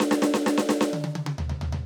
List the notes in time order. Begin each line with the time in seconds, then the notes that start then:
0.00 snare
0.11 snare
0.22 snare
0.34 snare
0.46 snare
0.58 snare
0.69 snare
0.81 snare
0.93 high tom
1.04 high tom
1.15 high tom
1.26 high tom
1.38 floor tom
1.49 floor tom
1.61 floor tom
1.72 floor tom